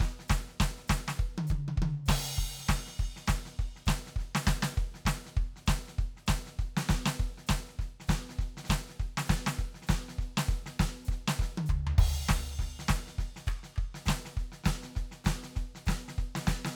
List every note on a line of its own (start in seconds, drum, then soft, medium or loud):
0.01 kick medium
0.01 snare medium
0.20 snare soft
0.29 kick medium
0.29 snare loud
0.29 hi-hat pedal medium
0.49 snare soft
0.61 kick medium
0.61 snare loud
0.79 snare soft
0.89 kick medium
0.89 snare loud
0.89 hi-hat pedal medium
1.09 snare loud
1.20 kick medium
1.39 high tom loud
1.48 kick medium
1.48 hi-hat pedal medium
1.52 high tom medium
1.69 high tom medium
1.78 kick medium
1.83 high tom loud
2.07 kick medium
2.07 snare loud
2.07 hi-hat pedal medium
2.07 crash loud
2.39 kick medium
2.59 snare soft
2.67 kick medium
2.67 snare loud
2.67 hi-hat pedal medium
2.88 snare soft
3.00 kick medium
3.00 snare soft
3.17 snare medium
3.28 kick medium
3.28 snare loud
3.28 hi-hat pedal medium
3.46 snare soft
3.60 kick medium
3.60 snare soft
3.77 snare soft
3.87 kick medium
3.87 snare loud
3.87 hi-hat pedal medium
4.07 snare soft
4.17 kick medium
4.17 snare soft
4.36 snare loud
4.45 kick medium
4.45 snare loud
4.45 hi-hat pedal medium
4.63 snare loud
4.77 kick medium
4.77 snare soft
4.95 snare soft
5.06 kick medium
5.06 snare loud
5.06 hi-hat pedal medium
5.27 snare soft
5.38 kick medium
5.38 cross-stick soft
5.57 snare soft
5.67 kick medium
5.67 snare loud
5.67 hi-hat pedal medium
5.88 snare soft
5.99 kick medium
5.99 snare soft
6.18 snare soft
6.27 kick medium
6.27 snare loud
6.27 hi-hat pedal medium
6.47 snare soft
6.60 kick medium
6.60 snare soft
6.78 snare loud
6.89 kick medium
6.89 snare loud
6.89 hi-hat pedal medium
7.07 snare loud
7.20 kick medium
7.20 snare soft
7.38 snare soft
7.48 kick medium
7.48 snare loud
7.48 hi-hat pedal medium
7.69 snare soft
7.80 kick medium
7.80 snare soft
8.01 snare soft
8.08 kick medium
8.08 snare loud
8.08 hi-hat pedal medium
8.30 snare medium
8.39 kick medium
8.39 snare soft
8.58 snare medium
8.65 snare medium
8.65 hi-hat pedal medium
8.70 kick medium
8.70 snare loud
8.90 snare soft
9.01 kick medium
9.01 snare soft
9.18 snare loud
9.27 kick medium
9.27 snare loud
9.27 hi-hat pedal medium
9.47 snare loud
9.59 kick medium
9.59 snare soft
9.75 snare soft
9.83 snare soft
9.88 kick medium
9.88 snare loud
9.88 hi-hat pedal medium
10.09 snare medium
10.19 kick medium
10.19 snare soft
10.38 snare loud
10.46 kick medium
10.46 hi-hat pedal medium
10.51 snare soft
10.67 snare medium
10.80 kick medium
10.80 snare loud
11.06 kick medium
11.06 hi-hat pedal medium
11.12 snare soft
11.29 snare loud
11.40 kick medium
11.40 snare medium
11.58 high tom loud
11.67 kick medium
11.67 hi-hat pedal medium
11.71 floor tom loud
11.88 floor tom loud
11.99 kick loud
11.99 crash loud
12.29 kick medium
12.29 snare loud
12.29 hi-hat pedal medium
12.52 snare soft
12.60 kick medium
12.60 snare medium
12.80 snare medium
12.88 kick medium
12.88 snare loud
12.88 hi-hat pedal medium
13.08 snare soft
13.19 kick medium
13.19 snare soft
13.37 snare medium
13.47 kick medium
13.47 cross-stick medium
13.47 hi-hat pedal medium
13.64 snare soft
13.77 kick medium
13.77 cross-stick soft
13.95 snare medium
14.06 kick medium
14.06 snare medium
14.06 hi-hat pedal medium
14.09 snare loud
14.26 snare medium
14.38 kick medium
14.38 snare soft
14.53 snare soft
14.65 snare medium
14.65 hi-hat pedal medium
14.66 kick medium
14.66 snare loud
14.84 snare medium
14.96 kick medium
14.96 snare soft
15.12 snare medium
15.25 kick medium
15.25 snare medium
15.25 hi-hat pedal medium
15.27 snare loud
15.44 snare medium
15.56 kick medium
15.56 snare soft
15.76 snare medium
15.87 kick medium
15.87 snare medium
15.87 hi-hat pedal medium
15.89 snare loud
16.09 snare medium
16.19 kick medium
16.19 snare soft
16.36 snare loud
16.47 kick medium
16.47 snare loud
16.47 hi-hat pedal medium
16.66 snare loud